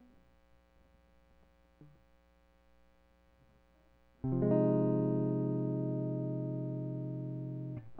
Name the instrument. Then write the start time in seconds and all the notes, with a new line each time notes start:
electric guitar
4.25 C3
4.33 F3
4.43 G#3
4.51 D#4